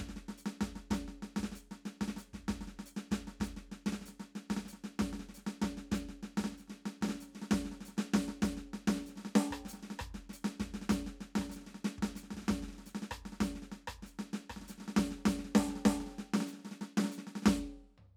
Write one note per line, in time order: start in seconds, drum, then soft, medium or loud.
0.01 kick soft
0.09 snare soft
0.17 snare soft
0.29 snare soft
0.38 hi-hat pedal soft
0.46 snare medium
0.61 kick soft
0.61 snare medium
0.76 snare soft
0.91 kick soft
0.91 snare medium
0.91 hi-hat pedal soft
1.08 snare soft
1.23 snare soft
1.37 kick soft
1.37 snare medium
1.43 snare medium
1.52 snare soft
1.52 hi-hat pedal medium
1.71 snare soft
1.86 snare soft
2.01 kick soft
2.01 snare medium
2.08 snare medium
2.17 snare soft
2.17 hi-hat pedal medium
2.34 kick soft
2.34 snare soft
2.49 kick soft
2.49 snare medium
2.61 snare soft
2.68 snare soft
2.79 snare soft
2.86 hi-hat pedal medium
2.97 snare medium
3.11 kick soft
3.11 snare medium
3.28 snare soft
3.41 kick soft
3.41 snare medium
3.41 hi-hat pedal soft
3.57 snare soft
3.72 snare soft
3.86 kick soft
3.86 snare medium
3.93 snare medium
4.02 snare soft
4.06 snare soft
4.06 hi-hat pedal medium
4.20 snare soft
4.36 snare soft
4.50 kick soft
4.50 snare medium
4.57 snare medium
4.66 snare soft
4.66 hi-hat pedal medium
4.73 snare soft
4.84 snare soft
5.00 kick soft
5.00 snare medium
5.09 kick soft
5.13 snare soft
5.20 snare soft
5.29 snare soft
5.35 snare soft
5.35 hi-hat pedal medium
5.47 snare medium
5.62 kick soft
5.62 snare medium
5.78 snare soft
5.92 kick soft
5.92 snare medium
5.92 hi-hat pedal medium
6.09 snare soft
6.23 snare soft
6.38 kick soft
6.38 snare medium
6.44 snare medium
6.52 snare soft
6.58 snare soft
6.58 hi-hat pedal soft
6.68 snare soft
6.86 snare medium
7.02 kick soft
7.02 snare medium
7.09 snare medium
7.15 snare soft
7.21 snare soft
7.21 hi-hat pedal medium
7.29 snare soft
7.33 snare soft
7.35 snare soft
7.42 snare soft
7.51 kick soft
7.51 snare loud
7.59 kick soft
7.65 snare soft
7.72 snare soft
7.81 snare soft
7.86 snare soft
7.86 hi-hat pedal medium
7.98 snare soft
7.98 snare medium
8.14 kick soft
8.14 snare loud
8.28 snare soft
8.43 kick soft
8.43 snare medium
8.43 hi-hat pedal soft
8.57 snare soft
8.74 snare soft
8.88 kick soft
8.88 snare medium
8.96 snare soft
9.01 snare soft
9.06 snare soft
9.06 hi-hat pedal soft
9.16 snare soft
9.18 snare soft
9.25 snare soft
9.36 snare loud
9.51 kick soft
9.51 cross-stick medium
9.65 snare soft
9.65 hi-hat pedal medium
9.74 snare soft
9.80 snare soft
9.83 snare soft
9.91 snare soft
9.99 kick soft
9.99 cross-stick medium
10.15 snare soft
10.30 snare soft
10.30 hi-hat pedal medium
10.45 snare medium
10.60 kick soft
10.60 snare medium
10.74 snare soft
10.82 snare soft
10.90 kick soft
10.90 snare medium
10.90 hi-hat pedal medium
10.99 kick soft
11.07 snare soft
11.21 snare soft
11.36 kick soft
11.36 snare medium
11.42 cross-stick medium
11.50 snare soft
11.50 hi-hat pedal medium
11.57 snare soft
11.62 snare soft
11.67 snare soft
11.75 snare soft
11.85 snare medium
11.98 kick soft
12.03 snare medium
12.16 snare soft
12.16 hi-hat pedal medium
12.24 snare soft
12.31 kick soft
12.31 snare soft
12.37 snare soft
12.42 snare soft
12.49 kick soft
12.49 snare medium
12.63 snare soft
12.69 snare soft
12.73 snare soft
12.79 snare soft
12.86 snare soft
12.86 hi-hat pedal soft
12.95 snare soft
13.02 snare soft
13.11 kick soft
13.11 cross-stick medium
13.26 snare soft
13.33 snare soft
13.41 kick soft
13.41 snare medium
13.41 hi-hat pedal soft
13.56 snare soft
13.62 snare soft
13.72 snare soft
13.88 kick soft
13.88 cross-stick medium
14.03 snare soft
14.03 hi-hat pedal soft
14.19 snare soft
14.34 snare medium
14.50 kick soft
14.50 cross-stick medium
14.57 snare soft
14.62 snare soft
14.68 snare soft
14.68 hi-hat pedal medium
14.78 snare soft
14.80 snare soft
14.97 kick soft
14.97 snare loud
15.11 snare soft
15.19 snare soft
15.26 kick soft
15.26 snare loud
15.26 hi-hat pedal medium
15.39 snare soft
15.45 snare soft
15.51 snare soft
15.55 kick soft
15.55 snare loud
15.69 snare soft
15.76 snare soft
15.81 snare soft
15.86 kick soft
15.86 snare loud
15.86 hi-hat pedal soft
16.01 snare soft
16.07 snare soft
16.11 snare soft
16.19 snare soft
16.34 snare medium
16.41 snare medium
16.47 snare soft
16.47 hi-hat pedal soft
16.53 snare soft
16.60 snare soft
16.65 snare soft
16.72 snare soft
16.82 snare soft
16.98 snare medium
17.04 snare medium
17.10 snare soft
17.10 hi-hat pedal medium
17.18 snare soft
17.27 snare soft
17.36 snare soft
17.43 snare soft
17.46 kick soft
17.46 snare loud
17.57 kick soft
17.98 floor tom soft